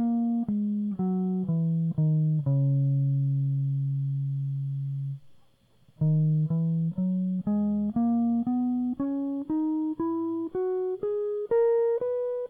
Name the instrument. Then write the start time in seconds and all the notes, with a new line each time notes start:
electric guitar
0.00 A#3
0.49 G#3
1.00 F#3
1.50 E3
2.00 D#3
2.48 C#3
6.03 D#3
6.52 E3
6.99 F#3
7.48 G#3
7.97 A#3
8.47 B3
9.00 C#4
9.50 D#4
10.00 E4
10.55 F#4
11.03 G#4
11.52 A#4
12.02 B4